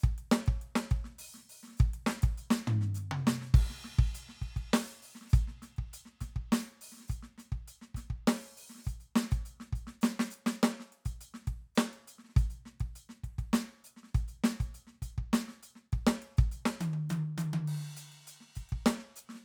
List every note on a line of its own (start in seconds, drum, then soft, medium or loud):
0.01 kick loud
0.01 hi-hat pedal soft
0.05 closed hi-hat soft
0.19 closed hi-hat soft
0.32 snare loud
0.47 kick medium
0.47 closed hi-hat soft
0.62 closed hi-hat soft
0.76 snare loud
0.84 snare soft
0.92 kick medium
0.92 closed hi-hat soft
1.05 snare soft
1.10 snare soft
1.16 open hi-hat medium
1.16 snare soft
1.35 snare soft
1.38 snare soft
1.50 open hi-hat medium
1.64 snare soft
1.68 snare soft
1.72 snare soft
1.75 snare soft
1.75 hi-hat pedal soft
1.80 kick loud
1.80 snare soft
1.80 closed hi-hat soft
1.94 closed hi-hat soft
2.07 snare loud
2.10 snare medium
2.23 kick loud
2.23 closed hi-hat medium
2.38 closed hi-hat medium
2.51 snare loud
2.68 floor tom loud
2.82 snare soft
2.95 snare soft
2.95 hi-hat pedal medium
3.12 mid tom loud
3.28 snare loud
3.42 snare soft
3.45 snare soft
3.55 kick loud
3.55 crash medium
3.70 snare soft
3.85 snare soft
3.99 kick loud
4.15 closed hi-hat medium
4.29 snare soft
4.42 kick soft
4.42 closed hi-hat soft
4.57 kick medium
4.57 closed hi-hat soft
4.74 open hi-hat loud
4.74 snare loud
5.03 open hi-hat medium
5.16 snare soft
5.22 snare soft
5.26 snare soft
5.30 kick loud
5.30 hi-hat pedal medium
5.34 closed hi-hat medium
5.48 snare soft
5.63 closed hi-hat soft
5.63 snare soft
5.77 kick medium
5.77 closed hi-hat soft
5.94 closed hi-hat medium
6.06 snare soft
6.21 closed hi-hat soft
6.21 kick soft
6.21 snare soft
6.37 kick medium
6.37 closed hi-hat soft
6.53 open hi-hat medium
6.53 snare loud
6.82 open hi-hat medium
6.93 snare soft
6.98 snare soft
7.01 snare soft
7.03 snare soft
7.09 closed hi-hat soft
7.09 kick medium
7.09 hi-hat pedal soft
7.23 snare soft
7.39 closed hi-hat soft
7.39 snare soft
7.53 kick medium
7.53 closed hi-hat soft
7.68 closed hi-hat medium
7.82 snare soft
7.95 closed hi-hat medium
7.95 kick soft
7.95 snare soft
8.11 kick medium
8.11 closed hi-hat soft
8.28 open hi-hat medium
8.28 snare loud
8.58 open hi-hat medium
8.70 snare soft
8.75 snare soft
8.79 snare soft
8.85 closed hi-hat soft
8.85 kick medium
8.85 hi-hat pedal soft
9.01 closed hi-hat soft
9.16 snare loud
9.24 snare soft
9.32 closed hi-hat soft
9.32 kick medium
9.32 snare soft
9.46 closed hi-hat soft
9.61 snare soft
9.73 closed hi-hat soft
9.73 kick medium
9.88 snare soft
10.02 snare loud
10.02 hi-hat pedal medium
10.20 snare loud
10.31 hi-hat pedal medium
10.47 snare loud
10.64 snare loud
10.81 snare soft
10.93 closed hi-hat soft
11.06 closed hi-hat medium
11.06 kick medium
11.22 closed hi-hat medium
11.35 snare soft
11.43 snare soft
11.48 kick medium
11.48 closed hi-hat soft
11.63 open hi-hat soft
11.76 snare loud
11.76 hi-hat pedal soft
11.94 snare soft
11.94 closed hi-hat soft
12.08 closed hi-hat medium
12.19 snare soft
12.25 snare soft
12.30 snare soft
12.35 closed hi-hat medium
12.35 kick loud
12.35 snare soft
12.51 closed hi-hat soft
12.66 snare soft
12.81 kick medium
12.81 closed hi-hat soft
12.96 closed hi-hat medium
13.10 snare soft
13.24 kick soft
13.24 closed hi-hat soft
13.39 kick medium
13.39 closed hi-hat soft
13.54 open hi-hat medium
13.54 snare loud
13.85 open hi-hat medium
13.85 hi-hat pedal soft
13.97 snare soft
14.04 snare soft
14.07 snare soft
14.15 closed hi-hat soft
14.15 kick medium
14.29 closed hi-hat soft
14.44 snare loud
14.61 closed hi-hat soft
14.61 kick medium
14.75 closed hi-hat soft
14.88 snare soft
14.93 snare soft
15.03 closed hi-hat medium
15.03 kick soft
15.19 kick medium
15.34 closed hi-hat medium
15.34 snare loud
15.49 snare soft
15.52 snare soft
15.63 closed hi-hat medium
15.76 snare soft
15.93 kick medium
15.93 closed hi-hat soft
16.07 snare loud
16.23 closed hi-hat soft
16.38 closed hi-hat soft
16.38 kick loud
16.52 closed hi-hat soft
16.66 snare loud
16.81 hi-hat pedal medium
16.81 high tom loud
16.94 high tom medium
17.10 hi-hat pedal medium
17.10 high tom loud
17.39 hi-hat pedal medium
17.39 high tom loud
17.54 high tom loud
17.68 crash medium
17.97 closed hi-hat medium
18.13 closed hi-hat soft
18.28 closed hi-hat medium
18.41 snare soft
18.56 closed hi-hat medium
18.56 kick soft
18.70 kick medium
18.70 closed hi-hat soft
18.87 closed hi-hat medium
18.87 snare loud
18.99 snare soft
19.17 open hi-hat medium
19.17 hi-hat pedal medium
19.30 snare soft
19.33 snare soft
19.36 snare soft